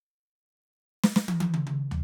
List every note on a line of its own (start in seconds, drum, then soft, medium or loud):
1.04 snare loud
1.09 hi-hat pedal soft
1.16 snare loud
1.28 high tom loud
1.40 high tom loud
1.54 mid tom loud
1.67 mid tom loud
1.91 floor tom medium